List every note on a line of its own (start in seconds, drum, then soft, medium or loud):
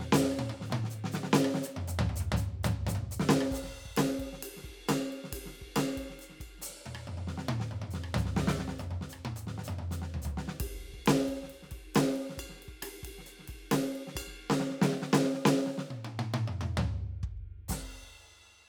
0.01 snare soft
0.13 snare loud
0.13 hi-hat pedal loud
0.24 snare medium
0.32 cross-stick medium
0.40 high tom loud
0.50 high tom medium
0.62 snare medium
0.66 hi-hat pedal soft
0.71 snare soft
0.71 high tom loud
0.85 snare soft
0.91 hi-hat pedal medium
0.91 high tom soft
1.05 snare medium
1.13 snare medium
1.13 hi-hat pedal medium
1.24 snare medium
1.34 snare loud
1.34 hi-hat pedal medium
1.45 cross-stick medium
1.55 snare medium
1.64 cross-stick soft
1.64 hi-hat pedal loud
1.77 mid tom loud
1.88 hi-hat pedal loud
1.88 mid tom medium
2.00 floor tom loud
2.10 mid tom medium
2.17 hi-hat pedal loud
2.21 mid tom medium
2.33 floor tom loud
2.37 hi-hat pedal medium
2.64 hi-hat pedal loud
2.64 floor tom loud
2.87 hi-hat pedal loud
2.87 floor tom loud
2.96 mid tom medium
3.12 hi-hat pedal loud
3.20 snare loud
3.30 snare loud
3.30 hi-hat pedal medium
3.41 cross-stick medium
3.52 kick soft
3.52 hi-hat pedal loud
3.52 crash medium
3.64 kick soft
3.64 snare soft
3.75 kick soft
3.86 kick soft
3.91 kick soft
3.97 snare loud
3.97 hi-hat pedal medium
3.97 ride loud
4.07 snare soft
4.20 kick soft
4.20 ride medium
4.26 kick soft
4.34 snare soft
4.43 hi-hat pedal medium
4.43 ride loud
4.57 snare soft
4.65 kick soft
4.65 ride soft
4.70 kick soft
4.89 snare loud
4.89 hi-hat pedal medium
4.89 ride bell loud
5.13 ride soft
5.25 snare soft
5.33 kick soft
5.33 hi-hat pedal medium
5.33 ride loud
5.39 kick soft
5.46 snare soft
5.56 ride soft
5.62 kick soft
5.67 kick soft
5.77 snare loud
5.77 hi-hat pedal medium
5.77 ride bell loud
5.98 kick soft
5.98 ride medium
6.03 kick soft
6.10 snare soft
6.20 hi-hat pedal medium
6.20 ride medium
6.30 snare soft
6.41 kick soft
6.41 snare soft
6.41 ride bell medium
6.59 snare soft
6.59 hi-hat pedal loud
6.64 ride bell medium
6.69 snare soft
6.73 snare soft
6.87 mid tom medium
6.96 cross-stick medium
7.08 mid tom medium
7.28 snare medium
7.38 snare medium
7.49 high tom loud
7.61 snare medium
7.72 mid tom medium
7.83 mid tom medium
7.91 snare medium
7.91 hi-hat pedal medium
8.05 cross-stick medium
8.15 hi-hat pedal medium
8.15 floor tom loud
8.26 snare medium
8.37 snare loud
8.48 snare loud
8.48 hi-hat pedal medium
8.60 snare medium
8.69 snare medium
8.79 hi-hat pedal soft
8.79 mid tom medium
8.92 mid tom medium
9.02 snare medium
9.10 cross-stick medium
9.10 hi-hat pedal medium
9.26 high tom loud
9.37 hi-hat pedal medium
9.37 high tom medium
9.48 snare medium
9.59 snare soft
9.65 hi-hat pedal medium
9.69 mid tom loud
9.79 mid tom medium
9.92 snare medium
9.92 hi-hat pedal medium
10.03 snare soft
10.15 floor tom medium
10.23 floor tom medium
10.23 hi-hat pedal medium
10.38 snare medium
10.49 snare medium
10.61 kick medium
10.61 ride loud
10.79 kick soft
10.94 kick soft
11.07 snare loud
11.07 ride loud
11.29 kick soft
11.29 ride soft
11.44 snare soft
11.50 hi-hat pedal soft
11.50 ride medium
11.63 snare soft
11.72 kick soft
11.72 ride medium
11.95 snare loud
11.95 hi-hat pedal medium
11.95 ride loud
12.17 ride soft
12.30 snare soft
12.38 kick soft
12.38 hi-hat pedal soft
12.38 ride bell loud
12.43 kick soft
12.50 snare soft
12.56 snare soft
12.63 ride medium
12.69 kick soft
12.83 cross-stick medium
12.83 hi-hat pedal medium
12.83 ride loud
13.04 kick soft
13.04 ride medium
13.09 kick soft
13.19 snare soft
13.27 hi-hat pedal medium
13.27 ride medium
13.40 snare soft
13.49 kick soft
13.49 ride medium
13.55 kick soft
13.72 snare loud
13.72 hi-hat pedal medium
13.72 ride loud
13.96 ride soft
14.08 snare soft
14.16 kick soft
14.16 hi-hat pedal medium
14.16 ride bell loud
14.22 kick soft
14.28 snare soft
14.32 hi-hat pedal soft
14.51 snare loud
14.61 snare medium
14.70 snare soft
14.82 snare loud
14.92 snare soft
15.03 snare medium
15.14 snare loud
15.24 snare medium
15.34 snare soft
15.46 snare loud
15.58 snare soft
15.67 snare soft
15.78 snare medium
15.91 high tom medium
16.05 high tom medium
16.20 high tom loud
16.35 high tom loud
16.48 mid tom loud
16.62 mid tom medium
16.78 floor tom loud
17.24 kick medium
17.32 kick soft
17.38 kick soft
17.69 kick medium
17.69 snare medium
17.69 hi-hat pedal loud
17.69 crash medium
17.78 kick soft
17.85 kick soft